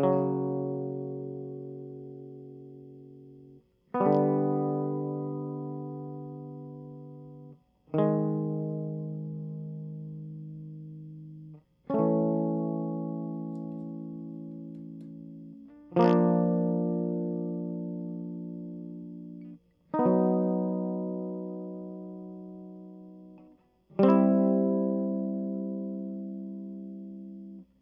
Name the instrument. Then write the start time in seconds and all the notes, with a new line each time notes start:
electric guitar
0.00 C#3 F#3
3.95 B3
4.01 G3
4.07 D3
7.95 D#3
7.99 G#3
11.90 C#4
11.94 A3
12.00 E3
15.97 F3 A#3
16.04 D4
19.94 D#4
19.99 B3
20.06 F#3
24.00 G3 C4
24.09 E4